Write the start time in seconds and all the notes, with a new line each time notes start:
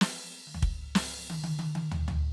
0.01 snare, crash
0.47 high tom
0.54 floor tom
0.63 kick
0.95 snare, crash
1.30 high tom
1.44 high tom
1.59 high tom
1.75 high tom
1.92 floor tom
2.08 floor tom